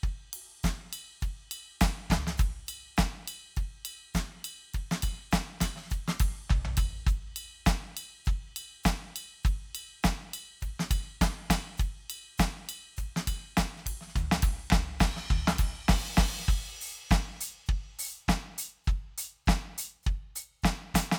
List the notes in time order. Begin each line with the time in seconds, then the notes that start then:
0.01 kick, hi-hat pedal, ride
0.33 ride
0.63 kick, snare, hi-hat pedal, ride
0.93 ride bell
1.21 kick, hi-hat pedal, ride
1.51 ride bell
1.81 kick, snare, hi-hat pedal, ride bell
2.10 kick, snare, mid tom
2.27 snare
2.37 kick, hi-hat pedal, ride
2.66 hi-hat pedal, ride bell
2.97 kick, snare, hi-hat pedal, ride
3.28 ride bell
3.55 kick, hi-hat pedal, ride
3.85 ride bell
4.14 kick, snare, hi-hat pedal, ride
4.44 ride bell
4.73 kick, hi-hat pedal, ride
4.91 snare
5.02 kick, ride bell
5.31 kick, snare, hi-hat pedal, ride
5.61 kick, snare, ride bell
5.76 snare
5.81 snare
5.85 snare
5.87 snare
5.89 kick, snare, hi-hat pedal, ride
6.08 snare
6.20 kick, ride
6.50 kick, floor tom
6.65 floor tom
6.77 kick, ride bell
7.07 kick, hi-hat pedal
7.36 ride bell
7.66 kick, snare, hi-hat pedal, ride
7.97 ride bell
8.25 kick, hi-hat pedal, ride
8.49 kick
8.56 ride bell
8.84 kick, snare, hi-hat pedal, ride
9.04 kick
9.16 ride bell
9.43 kick, hi-hat pedal, ride
9.75 closed hi-hat, ride bell
10.03 kick, snare, hi-hat pedal, ride
10.33 ride bell
10.60 kick, hi-hat pedal, ride
10.79 snare
10.89 kick, hi-hat pedal, ride bell
11.21 kick, snare, ride
11.50 kick, snare, ride bell
11.77 kick, hi-hat pedal, ride
12.10 ride bell
12.38 kick, snare, hi-hat pedal, ride
12.69 ride bell
12.97 kick, hi-hat pedal, ride
13.16 snare
13.27 kick, ride bell
13.57 kick, snare, hi-hat pedal, ride
13.76 snare
13.86 kick, ride
14.01 snare
14.07 snare
14.11 snare
14.15 kick, hi-hat pedal, mid tom
14.31 snare
14.42 kick, ride
14.70 kick, snare, mid tom
15.00 kick, snare, ride
15.16 snare
15.23 cross-stick
15.25 cross-stick
15.30 kick, mid tom
15.47 snare
15.58 kick, ride
15.88 kick, snare, crash
16.17 kick, snare, crash
16.40 snare
16.48 kick, hi-hat pedal
16.81 open hi-hat
17.10 kick, snare, hi-hat pedal
17.41 closed hi-hat
17.66 kick, hi-hat pedal
17.72 closed hi-hat
17.99 open hi-hat
18.28 kick, snare
18.58 closed hi-hat
18.84 kick, hi-hat pedal
18.88 closed hi-hat
19.18 closed hi-hat
19.46 kick, snare, hi-hat pedal
19.78 closed hi-hat
20.03 kick, hi-hat pedal
20.08 closed hi-hat
20.35 open hi-hat, hi-hat pedal
20.62 kick, snare, closed hi-hat, hi-hat pedal
20.94 open hi-hat, kick, snare
21.11 snare